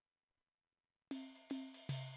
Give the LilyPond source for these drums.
\new DrumStaff \drummode { \time 4/4 \tempo 4 = 110 r4 r4 <tommh cymr>8 cymr16 <cymr tommh>16 r16 cymr16 <tomfh cymr>8 | }